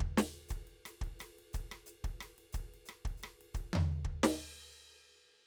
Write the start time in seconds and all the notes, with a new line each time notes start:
0.01 kick
0.18 snare, ride
0.49 kick, hi-hat pedal, ride
0.68 ride
0.86 cross-stick, hi-hat pedal, ride
1.02 kick, ride
1.20 cross-stick, hi-hat pedal, ride
1.39 ride
1.54 kick, hi-hat pedal, ride
1.72 cross-stick, ride
1.87 hi-hat pedal, ride
2.05 kick, ride
2.21 cross-stick, hi-hat pedal, ride
2.39 ride
2.53 kick, hi-hat pedal, ride
2.75 ride
2.86 cross-stick, hi-hat pedal, ride
3.06 kick, ride
3.18 hi-hat pedal
3.24 cross-stick, ride
3.42 ride
3.55 kick, hi-hat pedal, ride
3.74 floor tom, high tom
4.05 kick
4.24 snare, crash